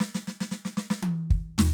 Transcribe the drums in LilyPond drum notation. \new DrumStaff \drummode { \time 4/4 \tempo 4 = 114 sn16 sn16 sn16 sn16 sn16 sn16 sn16 sn16 tommh8 bd8 <tomfh sn>4 | }